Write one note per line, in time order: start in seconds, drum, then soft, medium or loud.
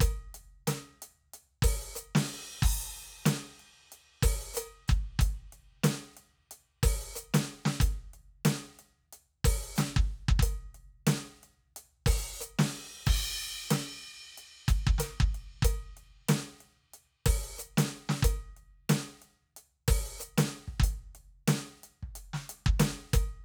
0.01 kick loud
0.01 closed hi-hat loud
0.35 closed hi-hat medium
0.68 snare loud
0.68 closed hi-hat loud
1.02 closed hi-hat medium
1.34 closed hi-hat medium
1.63 kick loud
1.63 open hi-hat loud
1.96 hi-hat pedal loud
2.15 snare loud
2.15 crash medium
2.63 kick loud
2.63 crash loud
3.26 snare loud
3.26 closed hi-hat loud
3.60 closed hi-hat soft
3.92 closed hi-hat medium
4.23 kick loud
4.23 open hi-hat loud
4.54 closed hi-hat loud
4.54 hi-hat pedal loud
4.59 cross-stick soft
4.88 closed hi-hat medium
4.88 kick loud
5.20 kick loud
5.20 closed hi-hat loud
5.53 closed hi-hat soft
5.84 snare loud
5.84 closed hi-hat loud
6.17 closed hi-hat soft
6.51 closed hi-hat medium
6.83 kick loud
6.83 open hi-hat loud
7.16 hi-hat pedal loud
7.34 snare loud
7.34 closed hi-hat loud
7.66 snare loud
7.81 kick loud
7.81 closed hi-hat loud
8.14 closed hi-hat soft
8.45 snare loud
8.45 closed hi-hat loud
8.79 closed hi-hat soft
9.13 closed hi-hat medium
9.45 kick loud
9.45 open hi-hat loud
9.76 snare loud
9.76 closed hi-hat loud
9.76 hi-hat pedal medium
9.97 kick loud
10.29 kick loud
10.40 kick loud
10.40 closed hi-hat loud
10.75 closed hi-hat soft
11.07 snare loud
11.07 closed hi-hat loud
11.44 closed hi-hat soft
11.77 closed hi-hat medium
12.07 open hi-hat loud
12.07 kick loud
12.41 hi-hat pedal loud
12.59 snare loud
12.59 crash medium
13.07 kick loud
13.07 crash loud
13.71 snare loud
13.71 closed hi-hat loud
14.38 closed hi-hat medium
14.69 kick loud
14.69 closed hi-hat medium
14.87 kick loud
14.99 snare medium
14.99 closed hi-hat loud
15.21 kick loud
15.35 closed hi-hat soft
15.63 kick loud
15.63 closed hi-hat loud
15.97 closed hi-hat soft
16.29 snare loud
16.29 closed hi-hat loud
16.61 closed hi-hat soft
16.94 closed hi-hat medium
17.26 kick loud
17.26 open hi-hat loud
17.59 hi-hat pedal loud
17.78 snare loud
17.78 closed hi-hat loud
18.10 snare loud
18.23 kick loud
18.23 closed hi-hat loud
18.57 closed hi-hat soft
18.90 snare loud
18.90 closed hi-hat loud
19.22 closed hi-hat soft
19.57 closed hi-hat medium
19.88 kick loud
19.88 open hi-hat loud
20.20 hi-hat pedal loud
20.38 snare loud
20.38 closed hi-hat loud
20.68 kick medium
20.80 kick loud
20.80 closed hi-hat loud
21.15 closed hi-hat soft
21.48 snare loud
21.48 closed hi-hat loud
21.84 closed hi-hat medium
22.03 kick medium
22.16 closed hi-hat medium
22.34 snare medium
22.50 closed hi-hat medium
22.67 kick loud
22.80 snare loud
22.80 closed hi-hat loud
23.14 kick loud
23.14 closed hi-hat loud